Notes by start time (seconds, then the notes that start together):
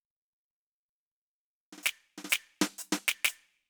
1.72 snare
1.78 snare
1.83 snare, hi-hat pedal
2.18 snare
2.24 snare
2.29 snare, hi-hat pedal
2.61 snare
2.78 hi-hat pedal
2.92 snare
3.08 snare
3.25 snare, hi-hat pedal